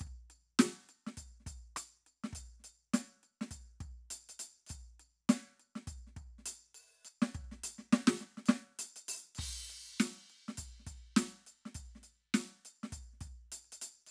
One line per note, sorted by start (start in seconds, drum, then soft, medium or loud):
0.01 kick soft
0.01 percussion medium
0.08 kick soft
0.31 percussion soft
0.60 snare loud
0.60 percussion loud
0.69 snare soft
0.84 percussion soft
0.90 percussion soft
1.08 snare medium
1.18 kick soft
1.18 percussion medium
1.41 snare soft
1.47 kick soft
1.47 percussion medium
1.77 cross-stick medium
1.77 percussion loud
2.07 percussion soft
2.25 snare medium
2.34 kick soft
2.34 percussion medium
2.61 snare soft
2.65 percussion medium
2.95 snare loud
2.95 percussion loud
3.24 percussion soft
3.42 snare medium
3.52 kick soft
3.52 percussion medium
3.81 kick soft
3.81 percussion soft
4.11 percussion loud
4.30 percussion medium
4.40 percussion loud
4.68 percussion medium
4.70 kick soft
4.70 percussion medium
5.01 percussion soft
5.30 snare loud
5.30 percussion loud
5.61 percussion soft
5.76 snare soft
5.88 kick soft
5.88 percussion medium
6.08 snare soft
6.17 kick soft
6.17 percussion soft
6.39 snare soft
6.44 snare soft
6.44 percussion loud
6.75 percussion medium
7.06 percussion medium
7.23 snare loud
7.36 kick soft
7.36 percussion soft
7.42 kick soft
7.45 kick soft
7.53 snare soft
7.57 kick soft
7.65 percussion loud
7.79 snare soft
7.94 snare loud
8.08 snare loud
8.17 percussion medium
8.22 snare soft
8.38 snare soft
8.47 snare loud
8.47 percussion medium
8.80 percussion loud
8.97 percussion medium
9.09 percussion loud
9.36 kick medium
9.36 percussion medium
9.36 crash loud
9.46 kick soft
9.49 kick soft
9.70 percussion soft
10.01 snare medium
10.01 percussion loud
10.31 percussion soft
10.49 snare medium
10.58 kick soft
10.58 percussion medium
10.80 snare soft
10.88 kick soft
10.88 percussion medium
10.96 kick soft
11.17 snare loud
11.17 percussion loud
11.48 percussion medium
11.66 snare soft
11.76 kick soft
11.76 percussion medium
11.96 snare soft
12.02 snare soft
12.02 percussion soft
12.35 snare medium
12.35 percussion loud
12.49 snare soft
12.66 percussion medium
12.84 snare medium
12.93 kick soft
12.93 percussion medium
12.99 kick soft
13.14 snare soft
13.22 kick soft
13.22 percussion soft
13.28 kick soft
13.53 percussion loud
13.66 percussion soft
13.73 percussion medium
13.82 percussion loud
14.08 percussion medium